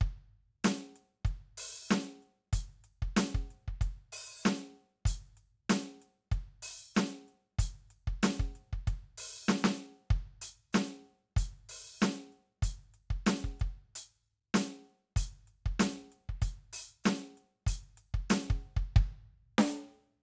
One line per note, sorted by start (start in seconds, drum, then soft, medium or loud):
0.01 kick medium
0.64 closed hi-hat loud
0.64 snare loud
0.96 closed hi-hat soft
1.25 kick medium
1.25 closed hi-hat soft
1.58 open hi-hat loud
1.89 closed hi-hat soft
1.89 snare loud
1.89 hi-hat pedal medium
2.23 closed hi-hat soft
2.53 closed hi-hat loud
2.53 kick medium
2.84 closed hi-hat soft
3.02 kick medium
3.17 closed hi-hat loud
3.17 snare loud
3.35 kick medium
3.51 closed hi-hat soft
3.68 kick soft
3.81 kick medium
3.81 closed hi-hat medium
4.12 open hi-hat loud
4.43 snare loud
4.43 closed hi-hat medium
4.43 hi-hat pedal medium
5.06 closed hi-hat loud
5.06 kick medium
5.37 closed hi-hat soft
5.70 closed hi-hat loud
5.70 snare loud
6.02 closed hi-hat soft
6.32 kick medium
6.32 closed hi-hat soft
6.63 open hi-hat loud
6.95 snare loud
6.95 closed hi-hat medium
6.95 hi-hat pedal medium
7.28 closed hi-hat soft
7.59 closed hi-hat loud
7.59 kick medium
7.91 closed hi-hat soft
8.07 kick medium
8.23 closed hi-hat loud
8.23 snare loud
8.40 kick medium
8.55 closed hi-hat soft
8.73 kick medium
8.87 kick medium
8.87 closed hi-hat medium
9.18 open hi-hat loud
9.49 snare loud
9.49 hi-hat pedal medium
9.64 snare loud
10.11 kick loud
10.42 open hi-hat loud
10.73 snare loud
10.73 closed hi-hat soft
10.73 hi-hat pedal medium
11.37 closed hi-hat loud
11.37 kick medium
11.69 open hi-hat loud
12.01 closed hi-hat medium
12.01 snare loud
12.01 hi-hat pedal medium
12.33 closed hi-hat soft
12.63 closed hi-hat loud
12.63 kick medium
12.94 closed hi-hat soft
13.10 kick medium
13.26 closed hi-hat loud
13.26 snare loud
13.44 kick medium
13.60 kick medium
13.60 closed hi-hat soft
13.96 closed hi-hat loud
14.54 closed hi-hat loud
14.54 snare loud
15.16 closed hi-hat loud
15.16 kick medium
15.48 closed hi-hat soft
15.66 kick medium
15.80 closed hi-hat loud
15.80 snare loud
16.12 closed hi-hat soft
16.29 kick soft
16.42 closed hi-hat medium
16.42 kick medium
16.73 open hi-hat loud
17.04 snare loud
17.04 closed hi-hat medium
17.04 hi-hat pedal medium
17.37 closed hi-hat soft
17.67 closed hi-hat loud
17.67 kick medium
17.98 closed hi-hat soft
18.14 kick medium
18.30 closed hi-hat loud
18.30 snare loud
18.50 kick medium
18.77 kick medium
18.96 kick loud
19.58 snare loud